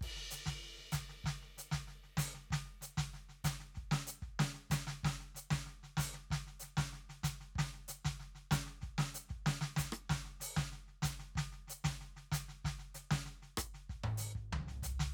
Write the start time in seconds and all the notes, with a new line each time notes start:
0.01 kick, ride
0.16 snare
0.31 snare, hi-hat pedal
0.46 kick, snare
0.63 snare
0.78 snare
0.92 kick, snare, hi-hat pedal
1.09 snare
1.24 kick, snare
1.42 snare
1.57 snare, hi-hat pedal
1.72 kick, snare
1.87 snare
2.03 snare
2.17 kick, snare, hi-hat pedal
2.34 snare
2.51 kick, snare
2.65 snare
2.81 snare, hi-hat pedal
2.97 kick, snare
3.14 snare
3.29 snare
3.44 kick, snare, hi-hat pedal
3.60 snare
3.74 kick, snare
3.91 snare
4.06 snare, hi-hat pedal
4.22 kick, snare
4.39 snare
4.54 snare
4.70 kick, snare, hi-hat pedal
4.87 snare
5.04 kick, snare
5.20 snare
5.35 snare, hi-hat pedal
5.51 kick, snare
5.66 snare
5.83 snare
5.97 kick, snare, hi-hat pedal
6.14 snare
6.31 kick, snare
6.47 snare
6.60 snare, hi-hat pedal
6.77 kick, snare
6.92 snare
7.09 snare
7.23 kick, snare, hi-hat pedal
7.40 snare
7.56 kick, snare
7.73 snare
7.88 snare, hi-hat pedal
8.05 kick, snare
8.20 snare
8.35 snare
8.51 kick, snare, hi-hat pedal
8.66 snare
8.81 kick, snare
8.98 snare
9.14 snare, hi-hat pedal
9.29 kick, snare
9.46 snare
9.61 snare
9.76 kick, snare, hi-hat pedal
9.92 cross-stick
10.09 kick, snare
10.25 snare
10.40 snare, hi-hat pedal
10.56 kick, snare
10.72 snare
10.88 snare
11.02 kick, snare, hi-hat pedal
11.19 snare
11.35 kick, snare
11.52 snare
11.67 snare, hi-hat pedal
11.84 kick, snare
12.01 snare
12.16 snare
12.32 kick, snare, hi-hat pedal
12.49 snare
12.65 kick, snare
12.79 snare
12.94 snare, hi-hat pedal
13.11 kick, snare
13.26 snare
13.42 snare
13.57 kick, cross-stick, hi-hat pedal
13.74 snare
13.89 kick, snare
14.04 open hi-hat, high tom
14.17 snare, hi-hat pedal
14.35 kick, snare
14.53 floor tom
14.68 snare
14.83 kick, snare, hi-hat pedal
14.99 snare